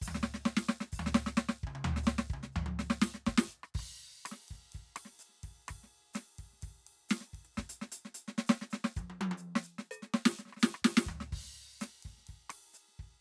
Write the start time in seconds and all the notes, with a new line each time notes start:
0.01 kick, hi-hat pedal
0.08 kick, floor tom
0.15 snare
0.23 kick, snare
0.34 snare
0.45 snare
0.57 snare
0.64 hi-hat pedal
0.69 snare
0.81 snare
0.92 kick, hi-hat pedal
0.99 floor tom
1.06 snare
1.13 kick, snare
1.26 snare
1.32 hi-hat pedal
1.37 snare
1.49 snare
1.63 kick, mid tom
1.70 kick
1.75 mid tom
1.84 floor tom
1.96 snare
2.03 kick, hi-hat pedal
2.07 snare
2.18 snare
2.28 kick, hi-hat pedal
2.33 mid tom
2.38 kick
2.43 snare
2.52 floor tom, hi-hat pedal
2.56 kick
2.66 high tom
2.73 kick
2.79 snare
2.90 snare
3.01 snare, hi-hat pedal
3.14 snare
3.26 kick, snare, hi-hat pedal
3.33 kick
3.38 snare
3.48 kick, hi-hat pedal
3.63 cross-stick
3.74 kick, crash
3.79 kick, cross-stick
4.25 cross-stick, hi-hat pedal, ride
4.31 snare
4.48 kick, ride
4.53 snare
4.58 snare
4.62 snare
4.65 snare
4.72 kick, hi-hat pedal, ride
4.80 kick
4.96 cross-stick, ride
5.05 snare
5.19 hi-hat pedal, ride
5.29 snare
5.34 snare
5.38 snare
5.43 kick, ride
5.49 kick
5.68 kick, cross-stick, hi-hat pedal, ride
5.75 kick
5.83 snare
6.14 snare, hi-hat pedal, ride
6.38 kick, ride
6.44 kick
6.53 snare
6.58 snare, hi-hat pedal
6.63 kick, ride
6.68 kick
6.87 ride
7.09 snare, hi-hat pedal, ride
7.21 snare
7.33 kick, ride
7.38 kick
7.45 open hi-hat
7.54 snare, hi-hat pedal
7.58 kick
7.63 kick
7.69 closed hi-hat
7.81 snare
7.92 open hi-hat
8.05 snare
8.14 open hi-hat
8.28 snare
8.38 snare
8.47 snare, hi-hat pedal
8.61 snare
8.70 snare, hi-hat pedal
8.84 snare
8.96 kick, hi-hat pedal, high tom
9.04 kick
9.10 high tom
9.21 high tom
9.31 high tom
9.37 hi-hat pedal
9.56 snare
9.63 hi-hat pedal
9.78 snare
9.91 hi-hat pedal, percussion
10.02 snare
10.14 snare
10.25 snare
10.37 snare, hi-hat pedal
10.45 snare
10.47 snare
10.53 cross-stick
10.57 snare, hi-hat pedal
10.63 snare
10.74 cross-stick
10.82 kick, snare, hi-hat pedal
10.97 snare
11.06 kick, floor tom
11.12 kick
11.20 snare
11.32 kick, crash
11.38 kick
11.44 snare
11.81 snare, hi-hat pedal, ride
12.03 kick, snare, ride
12.10 kick, snare
12.17 snare
12.22 snare
12.27 kick, hi-hat pedal, ride
12.34 kick
12.50 cross-stick, ride
12.74 hi-hat pedal
12.88 snare
12.98 kick, ride
13.04 kick